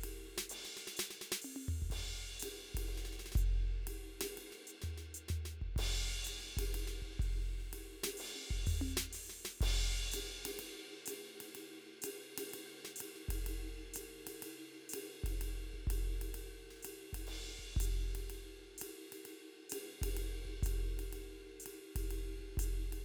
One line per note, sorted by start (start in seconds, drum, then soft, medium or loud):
0.01 hi-hat pedal soft
0.01 ride medium
0.38 snare medium
0.49 hi-hat pedal loud
0.49 ride medium
0.65 snare soft
0.77 snare soft
0.87 snare soft
0.97 snare medium
0.97 hi-hat pedal loud
1.11 snare soft
1.21 snare soft
1.32 snare medium
1.42 hi-hat pedal medium
1.42 high tom medium
1.56 high tom medium
1.68 floor tom medium
1.82 kick soft
1.90 kick soft
1.90 crash medium
1.90 ride medium
2.40 hi-hat pedal loud
2.40 ride medium
2.75 kick soft
2.75 ride medium
2.84 hi-hat pedal soft
2.84 ride soft
2.98 snare soft
3.05 snare soft
3.12 snare soft
3.19 snare soft
3.26 snare soft
3.32 kick medium
3.32 snare soft
3.37 open hi-hat medium
3.83 snare soft
3.87 ride medium
4.21 snare medium
4.21 ride loud
4.37 ride medium
4.52 snare soft
4.67 hi-hat pedal medium
4.82 snare soft
4.82 floor tom medium
4.98 snare soft
5.14 hi-hat pedal loud
5.29 snare soft
5.29 floor tom medium
5.45 snare soft
5.62 kick soft
5.76 kick medium
5.76 ride medium
5.93 snare soft
6.10 snare soft
6.25 hi-hat pedal loud
6.25 ride medium
6.40 snare soft
6.48 snare soft
6.57 kick soft
6.57 ride medium
6.74 ride medium
6.87 snare soft
7.02 kick soft
7.20 kick medium
7.20 crash soft
7.60 snare soft
7.73 ride medium
8.04 snare medium
8.04 ride loud
8.17 hi-hat pedal medium
8.17 ride medium
8.36 high tom soft
8.51 kick soft
8.67 floor tom medium
8.67 hi-hat pedal medium
8.81 open hi-hat soft
8.81 high tom medium
8.97 snare loud
9.13 snare soft
9.13 hi-hat pedal loud
9.30 snare soft
9.45 snare medium
9.61 kick medium
9.61 ride medium
9.90 snare soft
9.96 snare soft
10.00 snare soft
10.03 snare soft
10.05 snare soft
10.12 hi-hat pedal loud
10.12 ride medium
10.45 snare soft
10.45 ride loud
10.58 hi-hat pedal soft
10.58 ride medium
11.06 hi-hat pedal loud
11.06 ride medium
11.40 snare soft
11.40 ride medium
11.55 ride medium
12.02 hi-hat pedal loud
12.02 ride loud
12.38 snare soft
12.38 ride loud
12.49 hi-hat pedal soft
12.54 ride medium
12.70 snare soft
12.85 snare soft
12.96 hi-hat pedal loud
13.01 ride medium
13.16 snare soft
13.29 kick soft
13.29 ride medium
13.39 hi-hat pedal soft
13.46 ride medium
13.77 snare soft
13.94 hi-hat pedal loud
13.94 ride medium
14.27 ride medium
14.42 ride medium
14.79 snare soft
14.83 snare soft
14.89 hi-hat pedal loud
14.94 ride loud
15.24 kick soft
15.24 ride medium
15.41 ride medium
15.74 kick soft
15.87 kick medium
15.87 ride medium
16.21 ride medium
16.34 ride medium
16.71 snare soft
16.76 snare soft
16.79 snare soft
16.79 hi-hat pedal medium
16.85 ride medium
17.13 kick soft
17.13 ride medium
17.27 ride medium
17.59 kick soft
17.77 kick medium
17.77 ride medium
17.81 hi-hat pedal loud
18.15 ride medium
18.30 ride medium
18.78 hi-hat pedal loud
18.78 ride medium
19.12 ride medium
19.25 ride medium
19.70 hi-hat pedal loud
19.70 ride loud
20.02 kick soft
20.02 ride loud
20.17 ride medium
20.45 kick soft
20.63 kick medium
20.63 hi-hat pedal medium
20.63 ride medium
20.99 ride medium
21.13 ride medium
21.60 hi-hat pedal medium
21.66 ride medium
21.96 kick soft
21.96 ride medium
22.11 ride medium
22.40 kick soft
22.57 kick soft
22.57 hi-hat pedal loud
22.57 ride medium
22.93 ride medium